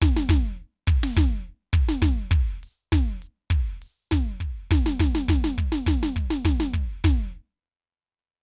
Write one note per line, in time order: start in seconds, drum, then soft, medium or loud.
0.02 kick loud
0.02 snare loud
0.17 snare loud
0.29 kick loud
0.29 snare loud
0.87 open hi-hat loud
0.87 kick loud
1.04 snare loud
1.17 kick loud
1.17 snare loud
1.42 hi-hat pedal soft
1.73 open hi-hat loud
1.73 kick loud
1.73 hi-hat pedal soft
1.89 snare loud
2.02 kick loud
2.02 snare loud
2.29 kick loud
2.29 hi-hat pedal medium
2.63 open hi-hat loud
2.92 kick loud
2.92 snare loud
2.92 hi-hat pedal soft
3.22 closed hi-hat loud
3.50 kick loud
3.82 open hi-hat loud
4.12 kick loud
4.12 snare loud
4.41 kick medium
4.71 kick loud
4.71 snare loud
4.71 hi-hat pedal soft
4.86 snare loud
5.00 kick loud
5.00 snare loud
5.00 hi-hat pedal medium
5.15 snare loud
5.29 kick loud
5.29 snare loud
5.44 snare loud
5.58 kick medium
5.72 snare loud
5.87 kick loud
5.87 snare loud
6.03 snare loud
6.16 kick medium
6.31 snare loud
6.45 kick loud
6.45 snare loud
6.60 snare loud
6.74 kick medium
6.74 snare soft
7.04 open hi-hat loud
7.04 kick loud
7.04 snare loud
7.19 hi-hat pedal medium